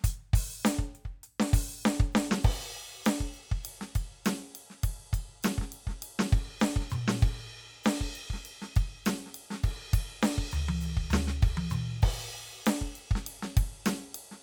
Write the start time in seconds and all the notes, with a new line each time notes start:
0.01 closed hi-hat, kick, snare
0.34 open hi-hat, kick
0.63 closed hi-hat, snare, hi-hat pedal
0.79 kick
0.96 closed hi-hat
1.06 kick
1.24 closed hi-hat
1.40 snare
1.54 open hi-hat, kick
1.85 snare, hi-hat pedal
2.00 kick
2.13 snare, hi-hat pedal
2.32 snare
2.45 kick, crash
2.71 hi-hat pedal
3.05 snare, hi-hat pedal, ride
3.21 kick
3.34 hi-hat pedal, ride
3.52 kick
3.64 hi-hat pedal, ride
3.82 snare
3.96 kick, ride bell
4.25 snare, hi-hat pedal, ride
4.56 ride
4.71 snare
4.76 snare
4.83 kick, hi-hat pedal, ride
5.13 kick, ride bell
5.43 snare, hi-hat pedal, ride
5.58 kick, snare
5.72 hi-hat pedal, ride
5.88 kick, snare
6.03 hi-hat pedal, ride
6.20 snare
6.33 kick, ride
6.61 snare, hi-hat pedal, ride
6.77 kick
6.81 snare
6.91 hi-hat pedal, mid tom
7.08 snare
7.23 kick, ride
7.84 snare, hi-hat pedal, ride
8.01 kick
8.14 hi-hat pedal, ride
8.31 kick, snare
8.45 hi-hat pedal, ride
8.62 snare
8.77 kick, ride bell
9.06 snare, hi-hat pedal, ride
9.27 snare
9.34 hi-hat pedal, ride
9.51 snare
9.54 snare
9.58 snare
9.63 kick, hi-hat pedal, ride
9.94 kick, ride
10.23 snare, hi-hat pedal, ride
10.38 kick
10.52 floor tom, hi-hat pedal
10.69 high tom
10.81 hi-hat pedal, ride
10.97 kick
11.11 snare, floor tom, hi-hat pedal
11.28 snare
11.42 kick, hi-hat pedal, ride
11.58 high tom
11.71 hi-hat pedal, mid tom
12.02 kick, hi-hat pedal, crash
12.67 snare, hi-hat pedal, ride
12.82 kick
12.96 hi-hat pedal, ride
13.12 kick, crash
13.16 snare
13.27 ride
13.43 snare
13.57 kick, ride
13.86 snare, hi-hat pedal, ride
14.08 kick
14.15 ride
14.32 snare